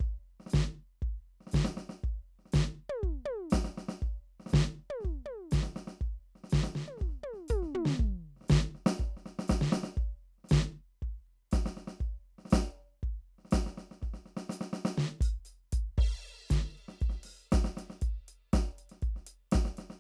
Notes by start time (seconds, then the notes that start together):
0.01 kick
0.41 snare
0.47 snare, hi-hat pedal
0.54 kick, snare
1.03 kick
1.41 snare
1.48 snare
1.52 kick, snare, hi-hat pedal
1.65 snare
1.78 snare
1.90 snare
2.01 kick, hi-hat pedal
2.40 snare
2.46 snare
2.53 kick, snare, hi-hat pedal
2.90 high tom
3.04 kick
3.26 high tom
3.51 kick, snare, hi-hat pedal
3.65 snare
3.78 snare
3.89 snare
4.03 kick
4.41 snare
4.47 snare, hi-hat pedal
4.51 kick, snare
4.54 snare
4.61 snare
4.80 snare
4.90 high tom
5.01 snare
5.05 kick
5.26 high tom
5.52 kick, snare, hi-hat pedal
5.64 snare
5.77 snare
5.88 snare
6.02 kick
6.36 snare
6.44 snare
6.51 kick, snare, hi-hat pedal
6.64 snare
6.76 snare
6.88 high tom
6.98 kick, snare
7.10 snare
7.24 high tom
7.34 snare
7.49 kick, hi-hat pedal, mid tom
7.63 snare
7.75 floor tom
7.86 snare
8.00 kick
8.37 snare
8.42 snare
8.45 snare
8.49 kick, snare, hi-hat pedal
8.76 snare
8.87 snare
9.00 kick, snare
9.18 snare
9.27 snare
9.40 snare
9.49 kick, snare, hi-hat pedal
9.62 snare
9.73 snare
9.84 snare
9.98 kick
10.39 snare
10.45 snare
10.49 snare, hi-hat pedal
10.52 kick, snare
11.03 kick
11.52 kick, snare, hi-hat pedal
11.66 snare
11.78 snare
11.88 snare
12.00 kick, hi-hat pedal
12.39 snare
12.46 snare
12.51 kick, snare, hi-hat pedal
12.61 snare
13.04 kick
13.39 snare
13.46 snare
13.52 kick, snare, hi-hat pedal
13.67 snare
13.78 snare
13.92 snare
14.02 kick, snare
14.14 snare
14.26 snare
14.38 snare
14.50 snare, hi-hat pedal
14.62 snare
14.74 snare
14.86 snare
14.98 snare
15.21 open hi-hat, kick
15.46 hi-hat pedal
15.73 open hi-hat, kick
15.98 kick, crash
16.49 kick, snare, closed hi-hat, hi-hat pedal
16.78 closed hi-hat
16.89 snare
17.01 kick, closed hi-hat
17.10 snare
17.24 snare, open hi-hat
17.52 kick, snare, closed hi-hat, hi-hat pedal
17.65 snare
17.78 closed hi-hat, snare
17.91 snare
18.02 closed hi-hat, kick
18.29 closed hi-hat
18.54 kick, snare, closed hi-hat
18.79 closed hi-hat
18.90 snare, closed hi-hat
19.02 kick, closed hi-hat
19.17 snare
19.27 closed hi-hat
19.52 kick, snare, closed hi-hat
19.66 snare
19.78 closed hi-hat, snare
19.91 snare